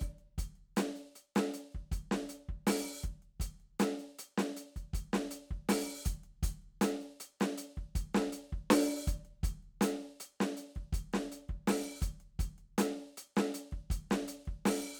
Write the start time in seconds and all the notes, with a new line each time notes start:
0.01 kick, hi-hat pedal, open hi-hat
0.19 closed hi-hat
0.38 closed hi-hat, kick
0.56 closed hi-hat
0.77 closed hi-hat, snare
0.96 closed hi-hat
1.16 closed hi-hat
1.36 closed hi-hat, snare
1.54 closed hi-hat, cross-stick
1.73 kick, closed hi-hat
1.92 closed hi-hat, kick
2.11 closed hi-hat, snare
2.29 closed hi-hat
2.49 kick, closed hi-hat
2.67 open hi-hat, snare
3.03 kick, closed hi-hat, hi-hat pedal
3.22 closed hi-hat
3.40 closed hi-hat, kick
3.60 closed hi-hat
3.80 closed hi-hat, snare
3.99 closed hi-hat
4.19 closed hi-hat
4.38 closed hi-hat, snare
4.57 closed hi-hat
4.76 closed hi-hat, kick
4.94 closed hi-hat, kick
5.13 snare, closed hi-hat
5.31 closed hi-hat
5.49 kick, closed hi-hat
5.69 open hi-hat, snare
6.04 closed hi-hat, kick, hi-hat pedal
6.24 closed hi-hat
6.43 closed hi-hat, kick
6.62 closed hi-hat
6.81 closed hi-hat, snare
7.01 closed hi-hat
7.20 closed hi-hat
7.40 closed hi-hat, snare
7.58 closed hi-hat
7.77 kick, closed hi-hat
7.95 closed hi-hat, kick
8.14 snare, closed hi-hat
8.20 snare
8.33 closed hi-hat
8.50 kick, closed hi-hat
8.70 open hi-hat, snare
9.06 closed hi-hat, kick, hi-hat pedal
9.25 closed hi-hat
9.43 closed hi-hat, kick
9.63 closed hi-hat
9.81 closed hi-hat, snare
10.02 closed hi-hat
10.20 closed hi-hat
10.40 snare, closed hi-hat
10.57 closed hi-hat
10.76 kick, closed hi-hat
10.93 closed hi-hat, kick
11.13 snare, closed hi-hat
11.32 closed hi-hat
11.49 kick, closed hi-hat
11.68 open hi-hat, snare
12.01 closed hi-hat, kick, hi-hat pedal
12.20 closed hi-hat
12.39 closed hi-hat, kick
12.58 closed hi-hat
12.78 closed hi-hat, snare
12.99 closed hi-hat
13.18 closed hi-hat
13.36 snare, closed hi-hat
13.54 closed hi-hat
13.72 kick, closed hi-hat
13.90 closed hi-hat, kick
14.11 snare, closed hi-hat
14.28 closed hi-hat
14.46 kick, closed hi-hat
14.66 open hi-hat, snare